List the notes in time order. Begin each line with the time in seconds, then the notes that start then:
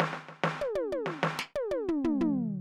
0.00 snare
0.13 snare
0.28 snare
0.43 snare
0.61 high tom
0.75 high tom
0.92 high tom
1.06 snare
1.23 snare
1.39 snare
1.55 high tom
1.71 high tom
1.88 floor tom
2.04 floor tom
2.20 floor tom